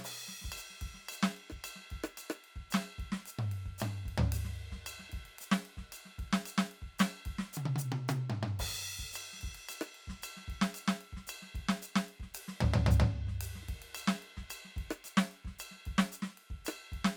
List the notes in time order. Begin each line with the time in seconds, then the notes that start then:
0.01 snare, crash
0.05 hi-hat pedal
0.29 snare
0.42 kick, snare
0.52 snare, ride bell
0.58 hi-hat pedal
0.70 snare
0.82 kick, ride
0.88 kick
0.94 snare
0.99 snare
1.03 snare
1.09 hi-hat pedal, ride bell
1.23 snare
1.37 ride
1.50 kick, cross-stick
1.64 hi-hat pedal, ride bell
1.76 snare
1.91 kick, ride
1.99 kick
2.04 cross-stick
2.18 hi-hat pedal, ride bell
2.30 cross-stick
2.44 ride
2.56 kick
2.71 snare, hi-hat pedal, ride bell
2.81 snare
2.99 kick, ride
3.05 kick
3.12 snare
3.26 hi-hat pedal, ride
3.39 mid tom
3.52 ride
3.66 kick
3.78 hi-hat pedal, mid tom, ride bell
4.06 kick, ride
4.12 kick
4.18 floor tom
4.32 hi-hat pedal, ride
4.45 snare
4.56 ride
4.72 kick, snare
4.86 hi-hat pedal, ride bell
5.00 snare
5.10 kick, cross-stick, ride
5.19 kick
5.26 snare, ride
5.31 snare
5.39 hi-hat pedal, ride
5.52 snare
5.66 ride
5.77 kick, snare
5.83 kick
5.93 hi-hat pedal, ride bell
6.06 snare
6.19 kick, ride
6.25 kick
6.33 snare
6.46 hi-hat pedal, ride bell
6.58 snare
6.72 ride
6.82 kick
6.99 snare, hi-hat pedal, ride bell
7.26 kick, ride
7.39 snare
7.53 hi-hat pedal
7.57 high tom
7.66 high tom
7.76 hi-hat pedal, high tom
7.92 high tom
8.09 hi-hat pedal, high tom
8.30 mid tom
8.43 mid tom
8.60 kick, hi-hat pedal, crash
8.99 kick
9.04 kick
9.13 hi-hat pedal, ride bell
9.33 snare
9.40 snare, ride
9.43 kick, snare
9.54 snare, ride
9.69 hi-hat pedal, ride bell
9.81 cross-stick
9.95 ride
10.08 kick, snare
10.23 hi-hat pedal, ride bell
10.37 snare
10.48 kick, ride
10.54 kick
10.62 snare
10.75 hi-hat pedal, ride bell
10.88 snare
11.01 ride
11.13 kick
11.17 snare
11.27 hi-hat pedal, ride bell
11.42 snare
11.55 kick, ride
11.61 kick
11.69 snare
11.75 snare
11.82 hi-hat pedal, ride bell
11.96 snare
12.09 ride
12.20 kick, snare
12.25 kick
12.34 hi-hat pedal, ride
12.48 snare
12.61 kick, floor tom
12.68 kick
12.74 floor tom
12.87 floor tom
12.91 hi-hat pedal
13.00 floor tom
13.12 floor tom
13.27 kick, snare
13.41 hi-hat pedal, ride
13.55 snare
13.63 cross-stick
13.69 kick, ride
13.75 kick
13.82 snare, ride
13.87 snare
13.95 hi-hat pedal, ride bell
14.08 snare
14.15 snare
14.23 ride
14.37 kick, snare
14.50 hi-hat pedal, ride bell
14.65 snare
14.77 kick, ride
14.83 kick
14.91 cross-stick
15.05 hi-hat pedal, ride bell
15.17 snare
15.32 ride
15.45 kick, snare
15.59 hi-hat pedal, ride bell
15.71 snare
15.86 kick, ride
15.93 kick
15.98 snare
16.12 hi-hat pedal, ride bell
16.23 snare
16.38 ride
16.50 kick
16.65 cross-stick, hi-hat pedal, ride bell
16.92 kick, ride
16.98 kick
17.05 snare